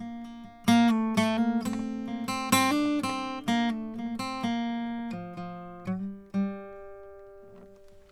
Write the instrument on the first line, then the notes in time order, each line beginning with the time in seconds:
acoustic guitar
0.02 A#3
0.69 A#3
0.90 A3
1.19 A3
1.38 A#3
1.67 C4
2.09 A#3
2.29 C4
2.54 C4
2.72 D4
3.05 C4
3.49 A#3
3.71 A3
4.01 A#3
4.20 C4
4.45 A#3
5.15 F3
5.39 F3
5.89 F#3
6.35 G3